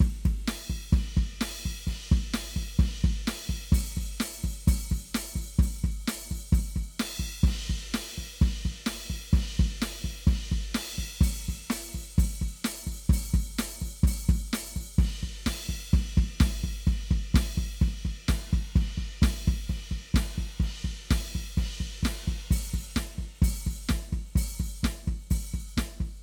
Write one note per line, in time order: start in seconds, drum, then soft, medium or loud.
0.01 kick loud
0.01 ride soft
0.26 kick loud
0.26 ride medium
0.48 snare loud
0.48 crash loud
0.70 kick medium
0.93 kick loud
0.93 crash medium
1.17 kick loud
1.41 snare loud
1.41 crash loud
1.66 kick medium
1.88 kick medium
1.88 crash medium
2.12 kick loud
2.34 snare loud
2.34 crash loud
2.57 kick medium
2.79 kick loud
2.79 crash medium
3.04 kick loud
3.28 snare loud
3.28 crash loud
3.50 kick medium
3.67 kick soft
3.73 open hi-hat loud
3.73 kick loud
3.97 kick medium
4.21 open hi-hat loud
4.21 snare loud
4.44 kick medium
4.68 open hi-hat loud
4.68 kick loud
4.92 kick medium
5.15 open hi-hat loud
5.15 snare loud
5.36 kick medium
5.59 open hi-hat loud
5.59 kick loud
5.84 kick medium
6.08 open hi-hat loud
6.08 snare loud
6.32 kick medium
6.53 open hi-hat medium
6.53 kick loud
6.76 kick medium
7.00 snare loud
7.00 crash loud
7.20 kick medium
7.44 kick loud
7.44 crash loud
7.70 kick medium
7.94 snare loud
7.94 crash loud
8.18 kick medium
8.42 kick loud
8.42 crash medium
8.66 kick medium
8.87 snare loud
8.87 crash loud
8.95 snare soft
9.10 kick medium
9.33 kick loud
9.33 crash loud
9.60 kick loud
9.82 snare loud
9.82 crash loud
10.05 kick medium
10.27 kick loud
10.27 crash loud
10.52 kick medium
10.75 snare loud
10.75 crash loud
10.99 kick medium
11.21 open hi-hat loud
11.21 kick loud
11.49 kick medium
11.70 open hi-hat loud
11.70 snare loud
11.95 kick medium
12.14 cross-stick soft
12.19 open hi-hat loud
12.19 kick loud
12.42 kick medium
12.65 open hi-hat loud
12.65 snare loud
12.87 kick medium
13.10 open hi-hat loud
13.10 kick loud
13.34 kick loud
13.59 open hi-hat loud
13.59 snare loud
13.82 kick medium
14.04 open hi-hat loud
14.04 kick loud
14.29 kick loud
14.53 open hi-hat loud
14.53 snare loud
14.77 kick medium
14.99 kick loud
14.99 crash loud
15.23 kick medium
15.47 kick medium
15.47 snare loud
15.47 crash loud
15.69 kick medium
15.93 kick loud
15.93 crash medium
16.18 kick loud
16.40 kick loud
16.40 snare loud
16.40 crash medium
16.64 kick medium
16.88 kick loud
16.88 crash medium
17.11 kick loud
17.35 kick loud
17.35 snare loud
17.35 crash medium
17.58 kick medium
17.81 kick loud
17.81 crash medium
18.05 kick medium
18.29 kick loud
18.29 snare loud
18.29 crash medium
18.53 kick loud
18.76 kick loud
18.76 crash medium
18.98 kick medium
19.23 kick loud
19.23 snare loud
19.23 crash medium
19.48 kick loud
19.70 kick medium
19.70 crash medium
19.92 kick medium
20.15 kick loud
20.15 snare loud
20.15 crash medium
20.38 kick medium
20.60 kick medium
20.60 crash medium
20.85 kick medium
21.11 kick loud
21.11 snare loud
21.11 crash loud
21.36 kick medium
21.58 kick loud
21.58 crash loud
21.81 kick medium
22.03 kick medium
22.03 snare loud
22.03 crash medium
22.28 kick medium
22.51 open hi-hat loud
22.51 kick loud
22.74 kick medium
22.97 kick medium
22.97 snare loud
23.19 kick medium
23.42 open hi-hat loud
23.42 kick loud
23.67 kick medium
23.89 kick medium
23.89 snare loud
24.13 kick medium
24.36 open hi-hat loud
24.36 kick loud
24.60 kick medium
24.84 kick medium
24.84 snare loud
25.08 kick medium
25.31 open hi-hat loud
25.31 kick loud
25.54 kick medium
25.78 kick medium
25.78 snare loud
26.01 kick medium